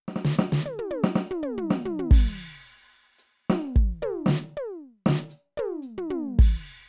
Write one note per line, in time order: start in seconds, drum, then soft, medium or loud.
0.08 snare medium
0.16 snare medium
0.25 snare loud
0.39 snare loud
0.52 snare loud
0.65 high tom loud
0.78 mid tom loud
0.90 high tom loud
1.04 snare loud
1.16 snare loud
1.30 floor tom loud
1.43 high tom loud
1.57 floor tom loud
1.71 snare loud
1.85 floor tom loud
1.99 floor tom loud
2.11 kick loud
2.11 crash loud
3.18 hi-hat pedal loud
3.50 snare loud
3.50 floor tom loud
3.73 kick loud
3.73 hi-hat pedal soft
4.02 mid tom loud
4.02 high tom loud
4.26 snare loud
4.28 snare loud
4.56 high tom loud
5.06 snare loud
5.08 snare loud
5.30 hi-hat pedal loud
5.57 mid tom loud
5.57 high tom loud
5.82 hi-hat pedal medium
5.97 floor tom loud
6.10 floor tom loud
6.39 kick loud
6.39 crash medium
6.63 crash soft